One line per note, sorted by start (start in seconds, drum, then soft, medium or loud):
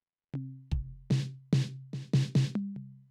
0.34 floor tom medium
0.34 high tom medium
0.72 kick medium
0.72 floor tom medium
1.10 snare loud
1.10 floor tom medium
1.53 snare loud
1.53 floor tom loud
1.93 snare medium
2.14 snare loud
2.35 snare loud
2.56 mid tom loud
2.76 floor tom medium